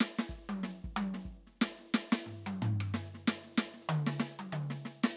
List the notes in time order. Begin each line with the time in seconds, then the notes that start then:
0.00 snare
0.19 snare
0.29 kick
0.49 high tom
0.63 snare
0.84 kick
0.96 high tom
1.14 snare
1.25 kick
1.47 snare
1.51 snare
1.55 snare
1.58 snare
1.61 snare
1.78 snare
1.83 snare
1.86 snare
1.93 snare
2.12 snare
2.26 floor tom
2.46 high tom
2.62 floor tom
2.80 cross-stick
2.94 snare
3.15 snare
3.27 snare
3.44 snare
3.48 snare
3.52 snare
3.54 snare
3.58 snare
3.74 snare
3.78 snare
3.82 snare
3.85 snare, mid tom
4.07 snare
4.20 snare
4.39 high tom
4.52 mid tom
4.70 snare
4.85 snare
5.03 open hi-hat, snare
5.12 hi-hat pedal